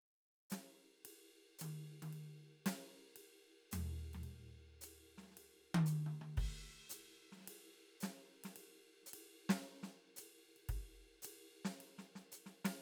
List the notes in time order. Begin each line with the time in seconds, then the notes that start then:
0.50 snare, hi-hat pedal, ride
1.05 ride
1.59 hi-hat pedal, high tom, ride
2.02 high tom, ride
2.13 ride
2.66 snare, hi-hat pedal, ride
3.16 ride
3.71 floor tom, hi-hat pedal, ride
4.13 floor tom, ride
4.81 hi-hat pedal, ride
5.18 snare
5.23 snare
5.27 snare
5.31 snare
5.37 ride
5.74 high tom
5.86 hi-hat pedal, ride
6.06 high tom
6.21 high tom
6.37 kick, crash
6.90 hi-hat pedal, ride
7.32 snare
7.37 snare
7.40 snare
7.44 snare
7.46 snare, ride
7.52 snare
8.00 snare, hi-hat pedal, ride
8.44 snare, ride
8.56 ride
9.03 snare, hi-hat pedal
9.13 ride
9.49 snare, ride
9.64 ride
9.83 snare
10.16 hi-hat pedal, ride
10.56 ride
10.69 kick, ride
11.22 hi-hat pedal, ride
11.65 snare
11.80 ride
11.98 snare
12.15 snare
12.32 hi-hat pedal, ride
12.46 snare
12.65 snare, ride